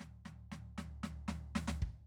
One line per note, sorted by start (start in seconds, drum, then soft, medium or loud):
0.00 snare soft
0.00 floor tom soft
0.26 snare soft
0.26 floor tom soft
0.52 snare soft
0.52 floor tom soft
0.78 snare soft
0.78 floor tom medium
1.04 snare soft
1.04 floor tom medium
1.28 snare soft
1.28 floor tom medium
1.56 snare medium
1.56 floor tom medium
1.68 snare medium
1.68 floor tom medium
1.82 kick soft